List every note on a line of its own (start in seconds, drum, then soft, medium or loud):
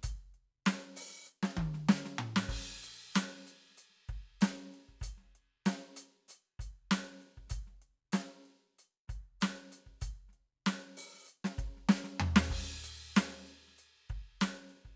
0.01 closed hi-hat medium
0.01 snare soft
0.05 kick soft
0.10 kick soft
0.35 closed hi-hat soft
0.67 closed hi-hat medium
0.67 snare loud
0.78 snare soft
0.97 open hi-hat medium
1.10 snare soft
1.14 snare soft
1.27 hi-hat pedal medium
1.44 snare medium
1.58 kick soft
1.58 high tom loud
1.75 snare soft
1.89 snare loud
2.06 snare soft
2.19 mid tom loud
2.37 snare loud
2.44 hi-hat pedal soft
2.49 kick soft
2.49 crash medium
2.71 snare soft
2.75 snare soft
2.79 snare soft
2.84 closed hi-hat soft
3.16 closed hi-hat loud
3.16 snare loud
3.33 snare soft
3.48 closed hi-hat soft
3.71 snare soft
3.78 closed hi-hat soft
3.90 snare soft
3.97 snare soft
4.10 kick soft
4.10 closed hi-hat soft
4.41 closed hi-hat medium
4.41 snare loud
4.41 hi-hat pedal soft
4.75 closed hi-hat soft
4.89 kick soft
5.00 closed hi-hat medium
5.00 kick soft
5.00 snare soft
5.00 hi-hat pedal soft
5.18 snare soft
5.21 snare soft
5.26 snare soft
5.36 closed hi-hat soft
5.66 closed hi-hat medium
5.66 snare loud
5.97 open hi-hat medium
6.29 closed hi-hat soft
6.29 hi-hat pedal medium
6.60 closed hi-hat soft
6.60 kick soft
6.92 closed hi-hat medium
6.92 snare loud
7.22 closed hi-hat soft
7.38 kick soft
7.48 closed hi-hat medium
7.48 kick soft
7.48 snare soft
7.68 snare soft
7.83 closed hi-hat soft
8.13 closed hi-hat medium
8.13 snare medium
8.46 closed hi-hat soft
8.79 closed hi-hat soft
9.08 closed hi-hat soft
9.08 kick soft
9.08 snare soft
9.41 closed hi-hat medium
9.41 snare medium
9.41 hi-hat pedal soft
9.73 closed hi-hat soft
9.87 kick soft
10.01 closed hi-hat medium
10.01 kick soft
10.01 hi-hat pedal soft
10.29 snare soft
10.34 closed hi-hat soft
10.67 closed hi-hat soft
10.67 snare medium
10.98 open hi-hat medium
11.15 snare soft
11.26 closed hi-hat soft
11.26 hi-hat pedal medium
11.45 snare medium
11.59 kick soft
11.59 closed hi-hat medium
11.65 kick soft
11.67 kick soft
11.78 snare soft
11.90 snare loud
12.05 snare soft
12.21 floor tom loud
12.37 snare loud
12.48 kick soft
12.48 snare soft
12.52 crash medium
12.56 kick soft
12.74 snare soft
12.81 closed hi-hat medium
12.81 snare soft
13.17 closed hi-hat medium
13.17 snare loud
13.29 snare soft
13.47 closed hi-hat soft
13.68 snare soft
13.79 closed hi-hat soft
14.10 kick soft
14.10 closed hi-hat soft
14.42 open hi-hat medium
14.42 snare loud
14.42 hi-hat pedal soft
14.70 closed hi-hat soft
14.86 kick soft